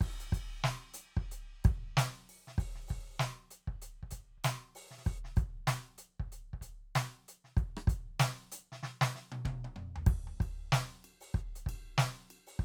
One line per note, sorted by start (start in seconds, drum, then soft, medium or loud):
0.01 kick loud
0.01 crash medium
0.20 closed hi-hat medium
0.33 closed hi-hat medium
0.33 kick loud
0.64 snare loud
0.94 closed hi-hat loud
1.17 kick medium
1.32 closed hi-hat medium
1.65 kick loud
1.65 closed hi-hat medium
1.97 closed hi-hat medium
1.97 snare loud
2.29 open hi-hat medium
2.39 open hi-hat soft
2.48 snare soft
2.58 open hi-hat medium
2.58 kick medium
2.75 snare soft
2.88 open hi-hat medium
2.88 kick medium
3.20 open hi-hat medium
3.20 snare loud
3.20 hi-hat pedal soft
3.51 closed hi-hat medium
3.68 kick medium
3.82 closed hi-hat medium
4.03 kick soft
4.11 closed hi-hat medium
4.11 kick soft
4.38 kick soft
4.44 closed hi-hat loud
4.44 snare loud
4.75 open hi-hat medium
4.82 open hi-hat soft
4.91 snare soft
4.98 snare soft
5.05 open hi-hat medium
5.05 kick medium
5.25 snare soft
5.36 closed hi-hat soft
5.36 kick loud
5.68 closed hi-hat medium
5.68 snare loud
5.98 closed hi-hat medium
6.20 kick medium
6.32 closed hi-hat medium
6.54 kick medium
6.62 closed hi-hat medium
6.62 kick soft
6.95 closed hi-hat medium
6.95 snare loud
7.28 closed hi-hat medium
7.45 snare soft
7.57 kick loud
7.57 closed hi-hat soft
7.77 cross-stick medium
7.88 closed hi-hat medium
7.88 kick loud
8.20 closed hi-hat loud
8.20 snare loud
8.52 closed hi-hat loud
8.72 snare medium
8.83 snare medium
9.01 snare loud
9.15 snare soft
9.15 hi-hat pedal soft
9.32 high tom loud
9.45 kick medium
9.45 high tom loud
9.65 high tom medium
9.76 mid tom medium
9.96 floor tom medium
10.07 kick loud
10.07 crash medium
10.27 floor tom medium
10.41 kick medium
10.41 ride bell soft
10.73 snare loud
10.73 hi-hat pedal medium
11.05 ride bell soft
11.21 open hi-hat medium
11.35 kick medium
11.56 closed hi-hat medium
11.67 kick medium
11.67 ride bell medium
11.98 snare loud
12.31 ride bell medium
12.47 open hi-hat medium
12.59 kick medium